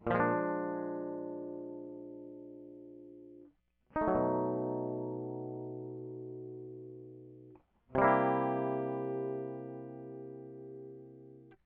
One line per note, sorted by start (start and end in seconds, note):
0.08 0.36 A#2
0.08 3.49 F3
0.16 3.47 G#3
0.21 3.54 D4
3.97 7.60 D#4
4.03 7.54 A3
4.09 7.60 F#3
4.17 7.62 B2
7.97 11.56 C3
7.97 11.59 G3
8.03 11.56 A#3
8.03 11.58 E4